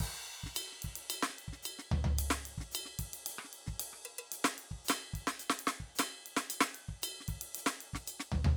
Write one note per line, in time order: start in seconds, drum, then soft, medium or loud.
0.01 kick medium
0.01 hi-hat pedal medium
0.01 crash medium
0.14 kick soft
0.44 kick soft
0.44 snare soft
0.55 hi-hat pedal medium
0.55 ride bell loud
0.73 snare soft
0.78 cross-stick soft
0.83 kick soft
0.83 ride medium
0.95 snare soft
0.95 ride medium
0.99 snare soft
1.11 hi-hat pedal medium
1.11 ride bell loud
1.23 snare loud
1.30 snare soft
1.39 ride soft
1.49 kick soft
1.53 snare soft
1.63 hi-hat pedal medium
1.63 ride bell loud
1.79 snare medium
1.92 kick soft
1.92 floor tom loud
2.05 floor tom loud
2.19 hi-hat pedal medium
2.19 ride loud
2.31 snare loud
2.46 ride medium
2.58 kick soft
2.58 snare soft
2.64 kick soft
2.72 hi-hat pedal medium
2.72 ride bell loud
2.86 snare soft
2.92 snare soft
3.00 kick soft
3.00 ride medium
3.05 kick soft
3.05 snare soft
3.09 snare soft
3.14 ride medium
3.27 hi-hat pedal medium
3.27 ride loud
3.39 cross-stick medium
3.45 snare soft
3.54 ride medium
3.67 kick soft
3.67 snare soft
3.74 kick soft
3.80 hi-hat pedal medium
3.80 ride loud
3.94 cross-stick soft
4.06 percussion loud
4.19 percussion loud
4.33 hi-hat pedal medium
4.33 ride medium
4.45 snare loud
4.59 ride medium
4.72 kick soft
4.85 hi-hat pedal medium
4.85 ride bell loud
4.91 snare loud
5.14 kick soft
5.14 ride medium
5.20 kick soft
5.28 snare medium
5.40 hi-hat pedal medium
5.40 ride bell medium
5.50 snare loud
5.60 ride medium
5.68 snare loud
5.81 kick soft
5.96 hi-hat pedal medium
5.96 ride bell loud
6.00 snare loud
6.27 ride medium
6.37 snare loud
6.51 hi-hat pedal medium
6.51 ride bell medium
6.61 snare loud
6.75 ride medium
6.89 kick soft
6.95 kick soft
7.03 hi-hat pedal medium
7.03 ride bell loud
7.21 snare soft
7.29 kick soft
7.29 ride medium
7.36 kick soft
7.42 ride medium
7.55 hi-hat pedal medium
7.55 ride medium
7.67 snare loud
7.81 ride medium
7.94 kick soft
7.94 snare medium
8.08 hi-hat pedal medium
8.08 ride bell medium
8.21 snare medium
8.32 kick soft
8.32 floor tom loud
8.41 kick soft
8.45 floor tom loud